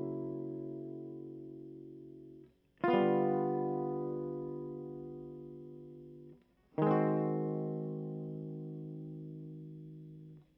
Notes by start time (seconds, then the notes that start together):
2.84 F4
2.88 B3
2.94 G3
3.02 D3
6.79 D#3 G#3
6.87 C4
6.91 F#4